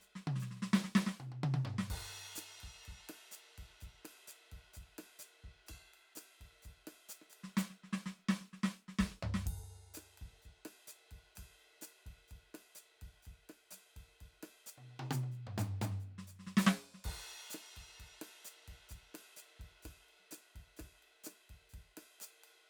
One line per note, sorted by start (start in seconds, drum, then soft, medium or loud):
0.01 hi-hat pedal soft
0.15 snare soft
0.27 high tom loud
0.35 snare soft
0.40 snare soft
0.40 hi-hat pedal soft
0.51 snare soft
0.56 snare soft
0.62 snare medium
0.73 snare loud
0.84 snare medium
0.95 snare loud
1.06 snare medium
1.20 high tom medium
1.32 high tom soft
1.43 high tom loud
1.54 open hi-hat soft
1.54 high tom loud
1.65 mid tom medium
1.78 snare medium
1.90 kick soft
1.90 crash medium
1.96 kick soft
2.35 cross-stick soft
2.35 hi-hat pedal loud
2.35 ride medium
2.60 kick soft
2.60 ride soft
2.83 hi-hat pedal soft
2.83 ride soft
2.88 kick soft
2.88 snare soft
2.92 snare soft
2.94 snare soft
3.09 cross-stick soft
3.09 ride medium
3.31 hi-hat pedal medium
3.31 ride soft
3.58 kick soft
3.58 ride soft
3.63 kick soft
3.80 kick soft
3.80 hi-hat pedal soft
3.80 ride soft
3.87 kick soft
4.05 cross-stick soft
4.05 ride medium
4.27 hi-hat pedal medium
4.27 ride soft
4.52 kick soft
4.52 ride soft
4.73 kick soft
4.73 hi-hat pedal soft
4.73 ride soft
4.98 cross-stick soft
4.98 snare soft
4.98 ride medium
5.19 hi-hat pedal medium
5.44 kick soft
5.66 kick soft
5.66 cross-stick soft
5.66 hi-hat pedal soft
5.66 ride bell medium
5.94 ride soft
6.15 cross-stick soft
6.15 snare soft
6.15 hi-hat pedal medium
6.15 ride medium
6.40 kick soft
6.40 ride soft
6.62 kick soft
6.62 hi-hat pedal soft
6.62 ride soft
6.87 cross-stick soft
6.87 ride medium
7.09 hi-hat pedal medium
7.09 ride soft
7.21 cross-stick soft
7.30 hi-hat pedal soft
7.30 ride soft
7.44 snare soft
7.57 snare loud
7.57 hi-hat pedal medium
7.70 snare soft
7.83 snare soft
7.93 snare medium
8.06 snare medium
8.19 snare soft
8.29 snare loud
8.41 snare soft
8.53 snare soft
8.63 snare loud
8.88 snare soft
8.99 kick soft
8.99 snare loud
9.06 kick soft
9.11 snare soft
9.23 floor tom medium
9.34 snare medium
9.46 kick soft
9.46 crash medium
9.57 kick soft
9.94 cross-stick soft
9.94 hi-hat pedal medium
9.94 ride medium
10.18 kick soft
10.18 ride soft
10.26 kick soft
10.39 hi-hat pedal soft
10.39 ride soft
10.45 kick soft
10.65 cross-stick soft
10.65 snare soft
10.65 ride medium
10.87 hi-hat pedal medium
10.87 ride soft
11.11 kick soft
11.11 ride soft
11.35 kick soft
11.35 snare soft
11.35 hi-hat pedal soft
11.35 ride medium
11.60 ride soft
11.81 cross-stick soft
11.81 hi-hat pedal medium
11.81 ride medium
12.06 kick soft
12.06 ride soft
12.11 kick soft
12.28 kick soft
12.28 hi-hat pedal soft
12.28 ride soft
12.54 cross-stick soft
12.54 snare soft
12.54 ride medium
12.75 hi-hat pedal medium
12.79 ride soft
13.01 kick soft
13.01 ride soft
13.22 hi-hat pedal soft
13.22 ride soft
13.27 kick soft
13.49 cross-stick soft
13.49 snare soft
13.49 ride soft
13.71 snare soft
13.71 hi-hat pedal medium
13.71 ride medium
13.96 kick soft
13.96 ride soft
14.20 kick soft
14.20 ride soft
14.43 cross-stick soft
14.43 snare soft
14.43 ride medium
14.66 hi-hat pedal medium
14.78 high tom soft
14.90 high tom soft
14.99 high tom medium
15.11 hi-hat pedal medium
15.11 high tom loud
15.23 high tom soft
15.31 hi-hat pedal soft
15.47 mid tom medium
15.58 hi-hat pedal medium
15.58 mid tom loud
15.81 hi-hat pedal medium
15.81 mid tom loud
15.91 snare soft
16.00 hi-hat pedal soft
16.18 snare soft
16.27 snare soft
16.27 hi-hat pedal soft
16.34 snare soft
16.39 snare soft
16.47 snare soft
16.57 snare loud
16.57 hi-hat pedal medium
16.66 snare loud
16.78 snare soft
16.94 snare soft
17.04 kick soft
17.04 crash medium
17.11 kick soft
17.50 snare soft
17.50 hi-hat pedal medium
17.50 ride medium
17.54 cross-stick soft
17.76 kick soft
17.76 ride soft
18.00 kick soft
18.00 ride soft
18.21 cross-stick soft
18.21 snare soft
18.21 ride medium
18.45 hi-hat pedal medium
18.45 ride soft
18.68 kick soft
18.68 ride soft
18.89 kick soft
18.89 hi-hat pedal soft
18.89 ride soft
18.96 kick soft
19.14 cross-stick soft
19.14 snare soft
19.14 ride medium
19.36 hi-hat pedal medium
19.36 ride soft
19.59 kick soft
19.59 ride soft
19.82 kick soft
19.82 cross-stick soft
19.82 snare soft
19.82 hi-hat pedal soft
19.82 ride medium
20.08 ride soft
20.19 snare soft
20.31 cross-stick soft
20.31 hi-hat pedal medium
20.31 ride medium
20.55 kick soft
20.55 ride soft
20.76 kick soft
20.76 cross-stick soft
20.76 hi-hat pedal soft
20.76 ride medium
21.02 ride soft
21.24 cross-stick soft
21.24 snare soft
21.24 hi-hat pedal medium
21.24 ride medium
21.49 kick soft
21.49 ride soft
21.69 hi-hat pedal soft
21.73 kick soft
21.73 ride soft
21.78 kick soft
21.97 cross-stick soft
21.97 ride medium
22.20 hi-hat pedal medium
22.20 ride medium
22.44 ride soft